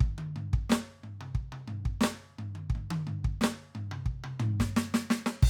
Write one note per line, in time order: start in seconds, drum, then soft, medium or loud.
0.01 kick loud
0.01 floor tom medium
0.18 high tom loud
0.36 floor tom medium
0.54 kick medium
0.70 snare loud
0.72 snare loud
1.04 floor tom medium
1.21 mid tom medium
1.35 kick medium
1.47 kick soft
1.53 mid tom medium
1.68 floor tom medium
1.86 kick medium
2.01 snare loud
2.04 snare loud
2.39 floor tom medium
2.56 high tom medium
2.70 kick medium
2.75 floor tom medium
2.91 high tom loud
3.07 floor tom medium
3.25 kick medium
3.41 snare loud
3.44 snare loud
3.75 floor tom medium
3.92 mid tom medium
4.06 kick medium
4.24 mid tom medium
4.40 floor tom loud
4.60 kick medium
4.60 snare loud
4.75 kick soft
4.75 snare loud
4.94 snare loud
5.11 snare loud
5.27 snare loud
5.43 kick loud
5.43 crash loud